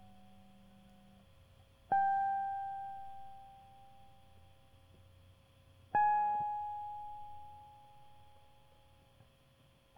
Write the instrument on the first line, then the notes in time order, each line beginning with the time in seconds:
electric guitar
1.92 G5
5.95 G#5